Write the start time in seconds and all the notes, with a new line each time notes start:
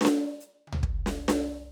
0.01 snare
0.05 snare
0.40 hi-hat pedal
0.67 high tom
0.72 floor tom
0.83 kick
1.06 snare
1.28 snare